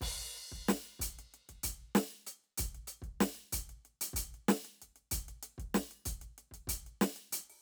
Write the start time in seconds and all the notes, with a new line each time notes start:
0.01 kick, hi-hat pedal, crash
0.13 closed hi-hat
0.37 closed hi-hat
0.52 kick, closed hi-hat
0.68 snare
0.86 closed hi-hat
0.99 closed hi-hat, kick
1.07 kick
1.19 closed hi-hat
1.34 closed hi-hat
1.49 kick, closed hi-hat
1.63 closed hi-hat, kick
1.85 closed hi-hat
1.95 snare
2.10 closed hi-hat
2.26 closed hi-hat
2.44 closed hi-hat
2.58 closed hi-hat, kick
2.74 closed hi-hat
2.87 closed hi-hat
3.02 kick, closed hi-hat
3.20 snare
3.35 closed hi-hat
3.52 closed hi-hat, kick
3.69 closed hi-hat
3.85 closed hi-hat
4.01 closed hi-hat
4.13 closed hi-hat, kick
4.34 closed hi-hat
4.48 snare
4.65 closed hi-hat
4.81 kick, closed hi-hat
4.96 closed hi-hat
5.11 closed hi-hat, kick
5.28 closed hi-hat
5.43 closed hi-hat
5.58 kick, closed hi-hat
5.74 snare
5.91 closed hi-hat
6.05 closed hi-hat, kick
6.21 closed hi-hat
6.38 closed hi-hat
6.51 kick, closed hi-hat
6.67 closed hi-hat, kick
6.86 closed hi-hat
7.01 snare
7.16 closed hi-hat
7.30 closed hi-hat, kick
7.50 open hi-hat